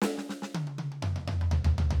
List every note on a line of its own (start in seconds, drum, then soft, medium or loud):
0.05 snare loud
0.18 snare medium
0.29 snare medium
0.42 snare medium
0.55 high tom loud
0.67 high tom medium
0.78 high tom loud
0.92 high tom medium
1.02 mid tom loud
1.16 mid tom medium
1.27 mid tom loud
1.41 mid tom medium
1.51 floor tom loud
1.64 floor tom loud
1.78 floor tom loud
1.91 floor tom loud